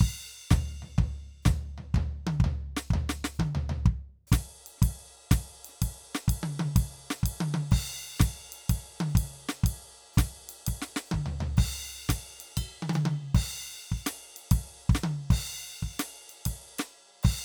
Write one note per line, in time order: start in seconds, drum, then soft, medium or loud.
0.01 kick loud
0.51 kick loud
0.51 snare loud
0.51 floor tom loud
0.82 floor tom medium
0.98 kick loud
0.98 floor tom loud
1.43 kick loud
1.43 snare loud
1.43 floor tom loud
1.43 hi-hat pedal soft
1.78 floor tom medium
1.95 kick loud
1.95 floor tom loud
2.27 high tom loud
2.40 kick loud
2.44 floor tom loud
2.77 snare loud
2.86 hi-hat pedal soft
2.91 kick loud
2.91 floor tom loud
3.10 snare loud
3.25 snare loud
3.34 hi-hat pedal soft
3.40 kick medium
3.40 high tom loud
3.55 floor tom loud
3.70 floor tom loud
3.86 kick loud
4.27 hi-hat pedal medium
4.32 kick loud
4.32 snare loud
4.32 ride loud
4.67 ride medium
4.78 snare soft
4.82 kick loud
4.82 snare soft
4.82 ride loud
5.31 kick loud
5.31 snare loud
5.31 ride loud
5.65 ride medium
5.69 snare soft
5.73 snare soft
5.82 kick medium
5.82 ride loud
6.15 snare loud
6.28 kick loud
6.28 ride loud
6.43 high tom loud
6.60 high tom loud
6.76 kick loud
6.76 ride loud
7.11 snare loud
7.18 hi-hat pedal soft
7.23 kick medium
7.23 ride loud
7.41 high tom loud
7.54 high tom loud
7.71 kick loud
7.71 crash loud
8.16 snare loud
8.16 hi-hat pedal medium
8.21 kick loud
8.21 ride loud
8.53 ride medium
8.70 kick loud
8.70 ride loud
9.01 high tom loud
9.09 hi-hat pedal soft
9.15 kick loud
9.15 ride loud
9.49 snare loud
9.64 kick loud
9.64 ride loud
10.14 kick loud
10.14 hi-hat pedal soft
10.19 snare loud
10.19 ride loud
10.49 ride medium
10.67 kick medium
10.67 ride loud
10.82 snare loud
10.96 snare loud
11.06 hi-hat pedal soft
11.12 kick medium
11.12 high tom loud
11.26 floor tom loud
11.41 floor tom loud
11.57 kick loud
11.57 crash loud
12.04 hi-hat pedal soft
12.09 kick medium
12.09 snare loud
12.09 ride loud
12.41 ride medium
12.57 kick medium
12.57 ride bell loud
12.83 high tom loud
12.90 hi-hat pedal medium
12.90 high tom loud
12.96 high tom loud
13.06 high tom loud
13.35 kick loud
13.35 crash loud
13.92 kick medium
13.98 hi-hat pedal soft
14.07 snare loud
14.07 ride loud
14.37 ride medium
14.52 kick loud
14.52 ride loud
14.90 kick loud
14.90 hi-hat pedal soft
14.95 snare loud
15.04 high tom loud
15.31 kick loud
15.31 crash loud
15.83 kick medium
15.93 hi-hat pedal soft
16.00 snare loud
16.00 ride loud
16.30 ride medium
16.46 kick medium
16.46 ride loud
16.79 snare loud
16.79 hi-hat pedal medium
16.79 percussion loud
17.23 kick loud
17.23 crash loud